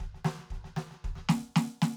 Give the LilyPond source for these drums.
\new DrumStaff \drummode { \time 4/4 \tempo 4 = 114 <bd sn>16 sn16 sn16 sn16 <bd sn>16 sn16 sn16 sn16 <bd sn>16 sn16 sn8 sn8 sn8 | }